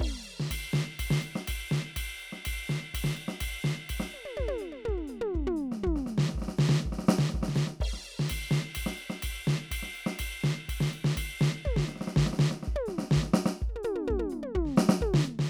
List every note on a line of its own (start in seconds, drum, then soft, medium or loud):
0.01 kick soft
0.01 crash medium
0.08 kick soft
0.23 hi-hat pedal medium
0.41 snare medium
0.51 kick soft
0.51 ride bell loud
0.71 snare loud
0.71 hi-hat pedal medium
0.94 hi-hat pedal soft
1.00 kick soft
1.00 ride bell loud
1.06 kick soft
1.11 snare loud
1.20 hi-hat pedal medium
1.20 ride medium
1.36 snare medium
1.48 kick soft
1.48 ride bell loud
1.55 kick soft
1.68 hi-hat pedal medium
1.72 snare loud
1.97 kick soft
1.97 ride bell loud
2.17 hi-hat pedal medium
2.17 ride soft
2.33 snare soft
2.46 kick soft
2.46 ride bell loud
2.53 kick soft
2.66 snare medium
2.66 hi-hat pedal medium
2.95 kick soft
2.95 ride bell loud
3.05 snare medium
3.13 hi-hat pedal medium
3.13 ride soft
3.29 snare medium
3.41 kick soft
3.41 ride loud
3.48 kick soft
3.61 snare loud
3.61 hi-hat pedal medium
3.90 kick soft
3.90 ride bell loud
3.97 kick soft
4.01 snare medium
4.11 hi-hat pedal medium
4.11 high tom soft
4.26 high tom medium
4.37 kick soft
4.37 high tom loud
4.47 kick soft
4.47 high tom loud
4.59 hi-hat pedal medium
4.59 high tom soft
4.72 high tom medium
4.85 kick soft
4.85 mid tom loud
4.95 kick soft
4.95 mid tom soft
5.08 hi-hat pedal medium
5.08 mid tom soft
5.22 mid tom loud
5.34 kick soft
5.34 floor tom soft
5.43 kick soft
5.47 floor tom loud
5.57 hi-hat pedal medium
5.72 snare soft
5.84 kick soft
5.84 floor tom loud
5.94 kick soft
5.94 snare soft
6.07 snare soft
6.07 hi-hat pedal medium
6.19 snare loud
6.30 snare soft
6.35 kick soft
6.35 snare soft
6.41 kick soft
6.41 snare soft
6.49 snare medium
6.58 snare loud
6.58 hi-hat pedal medium
6.70 snare loud
6.81 snare soft
6.86 kick soft
6.86 snare soft
6.93 snare soft
6.99 snare medium
7.04 snare soft
7.04 hi-hat pedal medium
7.09 snare loud
7.19 snare loud
7.30 snare soft
7.35 kick soft
7.35 snare soft
7.41 kick soft
7.41 snare soft
7.41 snare medium
7.49 snare medium
7.56 snare loud
7.56 hi-hat pedal medium
7.68 snare soft
7.81 kick soft
7.81 crash medium
7.87 kick soft
7.93 kick soft
7.93 snare soft
8.04 hi-hat pedal medium
8.20 snare medium
8.30 kick soft
8.30 ride bell loud
8.37 kick soft
8.51 snare loud
8.51 hi-hat pedal medium
8.76 kick soft
8.76 ride bell loud
8.83 kick soft
8.83 snare medium
8.97 hi-hat pedal medium
8.97 ride soft
9.11 snare medium
9.23 kick soft
9.23 ride bell loud
9.30 kick soft
9.44 hi-hat pedal medium
9.48 snare loud
9.72 kick soft
9.72 ride bell loud
9.83 snare soft
9.92 hi-hat pedal medium
9.92 ride medium
10.07 snare medium
10.20 kick soft
10.20 ride bell loud
10.40 hi-hat pedal medium
10.45 snare loud
10.69 kick soft
10.69 ride bell loud
10.75 kick soft
10.81 snare loud
10.89 hi-hat pedal medium
10.94 ride soft
11.05 snare loud
11.18 kick soft
11.18 ride bell loud
11.24 kick soft
11.38 snare loud
11.38 hi-hat pedal medium
11.66 kick soft
11.66 high tom loud
11.73 kick soft
11.77 kick soft
11.77 snare loud
11.88 snare soft
11.88 hi-hat pedal medium
11.97 snare soft
12.02 snare medium
12.08 snare medium
12.17 kick soft
12.17 snare loud
12.27 snare medium
12.34 snare medium
12.39 snare loud
12.39 hi-hat pedal medium
12.52 snare medium
12.64 snare soft
12.68 kick soft
12.75 kick soft
12.75 high tom loud
12.86 snare soft
12.86 hi-hat pedal medium
12.99 snare medium
13.04 snare soft
13.12 snare loud
13.16 kick soft
13.22 kick soft
13.22 snare soft
13.34 snare loud
13.34 hi-hat pedal medium
13.47 snare medium
13.63 kick soft
13.69 kick soft
13.69 mid tom soft
13.76 mid tom medium
13.84 hi-hat pedal medium
13.84 mid tom loud
13.96 mid tom medium
14.05 hi-hat pedal soft
14.05 mid tom loud
14.11 kick soft
14.17 kick soft
14.17 mid tom loud
14.30 floor tom medium
14.30 hi-hat pedal medium
14.43 high tom medium
14.55 kick soft
14.55 floor tom loud
14.63 kick soft
14.63 snare soft
14.78 snare loud
14.78 hi-hat pedal medium
14.90 snare loud
15.02 kick soft
15.02 mid tom loud
15.08 kick soft
15.15 snare loud
15.25 hi-hat pedal medium
15.40 snare loud